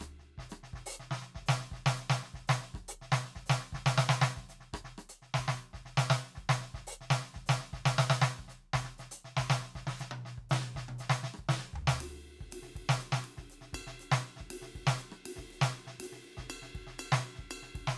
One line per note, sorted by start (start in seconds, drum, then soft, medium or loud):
0.01 cross-stick medium
0.01 hi-hat pedal medium
0.19 snare soft
0.38 kick soft
0.38 snare medium
0.44 kick soft
0.50 cross-stick medium
0.50 hi-hat pedal medium
0.64 snare soft
0.74 kick soft
0.74 snare soft
0.79 kick soft
0.86 open hi-hat loud
0.95 hi-hat pedal medium
1.00 snare soft
1.11 snare medium
1.22 snare soft
1.35 kick soft
1.35 snare soft
1.43 kick soft
1.43 hi-hat pedal medium
1.49 snare loud
1.61 snare soft
1.72 kick soft
1.72 snare soft
1.78 kick soft
1.86 snare loud
1.96 snare soft
1.96 hi-hat pedal medium
2.10 snare loud
2.23 snare soft
2.34 kick soft
2.34 snare soft
2.48 snare loud
2.48 hi-hat pedal medium
2.62 snare soft
2.75 kick soft
2.75 cross-stick soft
2.80 kick soft
2.89 open hi-hat loud
2.89 hi-hat pedal medium
3.02 snare soft
3.12 snare loud
3.24 snare soft
3.36 kick soft
3.36 snare soft
3.46 snare loud
3.46 hi-hat pedal medium
3.61 snare soft
3.73 kick soft
3.73 snare medium
3.79 kick soft
3.86 snare loud
3.98 snare loud
3.98 hi-hat pedal medium
4.09 snare loud
4.22 snare loud
4.36 kick soft
4.36 snare soft
4.49 snare soft
4.49 hi-hat pedal medium
4.61 snare soft
4.74 kick soft
4.74 cross-stick medium
4.79 kick soft
4.85 snare soft
4.98 cross-stick medium
4.98 hi-hat pedal medium
5.10 closed hi-hat medium
5.22 snare soft
5.34 snare loud
5.39 kick soft
5.48 snare loud
5.48 hi-hat pedal medium
5.62 snare soft
5.74 kick soft
5.74 snare soft
5.86 snare soft
5.98 snare loud
5.98 hi-hat pedal medium
6.11 snare loud
6.18 snare soft
6.23 snare soft
6.35 kick soft
6.35 snare soft
6.50 snare loud
6.50 hi-hat pedal medium
6.61 snare soft
6.75 kick soft
6.75 snare soft
6.80 kick soft
6.87 open hi-hat loud
6.94 hi-hat pedal medium
7.01 snare soft
7.11 snare loud
7.22 snare soft
7.34 kick soft
7.34 snare soft
7.44 kick soft
7.44 hi-hat pedal medium
7.49 snare loud
7.61 snare soft
7.73 kick soft
7.73 snare medium
7.79 kick soft
7.86 snare loud
7.98 snare loud
7.98 hi-hat pedal medium
8.10 snare loud
8.22 snare loud
8.36 kick soft
8.36 snare soft
8.48 snare soft
8.48 hi-hat pedal medium
8.63 snare soft
8.74 kick soft
8.74 snare loud
8.85 snare soft
8.99 snare medium
8.99 hi-hat pedal medium
9.12 closed hi-hat loud
9.25 snare soft
9.37 kick soft
9.37 snare loud
9.50 snare loud
9.50 hi-hat pedal medium
9.62 snare soft
9.76 kick soft
9.76 snare medium
9.87 snare medium
9.99 snare medium
9.99 hi-hat pedal medium
10.12 high tom loud
10.26 snare medium
10.38 kick soft
10.50 snare loud
10.50 hi-hat pedal medium
10.50 high tom loud
10.76 kick soft
10.76 snare medium
10.89 high tom loud
10.99 snare medium
10.99 hi-hat pedal medium
11.10 snare loud
11.21 snare medium
11.21 hi-hat pedal soft
11.34 cross-stick medium
11.39 kick soft
11.49 snare loud
11.49 hi-hat pedal soft
11.60 snare soft
11.74 kick soft
11.74 floor tom medium
11.79 kick soft
11.88 snare loud
11.95 snare soft
12.01 hi-hat pedal medium
12.01 ride loud
12.41 kick soft
12.52 hi-hat pedal medium
12.52 ride loud
12.63 snare soft
12.76 kick soft
12.76 ride medium
12.82 kick soft
12.89 snare loud
13.00 hi-hat pedal medium
13.00 ride soft
13.13 snare loud
13.25 ride medium
13.38 kick soft
13.38 snare soft
13.50 hi-hat pedal medium
13.50 ride medium
13.62 snare soft
13.74 kick soft
13.74 ride bell loud
13.79 kick soft
13.87 snare medium
14.00 hi-hat pedal medium
14.00 ride medium
14.12 snare loud
14.37 snare soft
14.41 kick soft
14.51 hi-hat pedal medium
14.51 ride loud
14.62 snare soft
14.76 kick soft
14.76 ride soft
14.87 snare loud
14.98 hi-hat pedal medium
14.98 ride soft
15.12 cross-stick medium
15.26 ride loud
15.36 kick soft
15.36 snare soft
15.51 hi-hat pedal medium
15.51 ride soft
15.62 snare loud
15.76 ride soft
15.87 snare medium
15.99 kick soft
15.99 ride loud
16.03 hi-hat pedal medium
16.13 snare soft
16.25 ride soft
16.38 kick soft
16.38 snare medium
16.49 hi-hat pedal soft
16.49 ride bell loud
16.63 snare soft
16.75 kick soft
16.75 ride soft
16.81 kick soft
16.87 snare soft
16.99 hi-hat pedal medium
16.99 ride bell loud
17.12 snare loud
17.19 snare soft
17.25 ride soft
17.36 kick soft
17.36 snare soft
17.51 hi-hat pedal medium
17.51 ride bell loud
17.63 snare soft
17.75 kick medium
17.75 ride medium
17.81 kick soft
17.88 snare medium